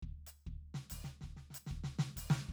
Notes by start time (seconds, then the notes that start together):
0.03 kick
0.27 percussion
0.47 kick
0.74 snare
0.90 kick, percussion
1.04 snare
1.21 kick, snare
1.37 snare
1.50 snare
1.54 percussion
1.67 snare
1.71 kick
1.84 snare
1.99 snare
2.16 kick, percussion
2.30 snare
2.49 kick